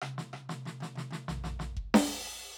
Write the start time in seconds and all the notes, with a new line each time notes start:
0.02 cross-stick, high tom
0.18 snare, high tom
0.33 cross-stick, high tom
0.49 snare, high tom
0.65 snare, high tom
0.80 snare, high tom
0.96 snare, high tom
1.11 snare, high tom
1.28 snare, floor tom
1.44 snare, floor tom
1.59 snare, floor tom
1.77 kick
1.94 snare, crash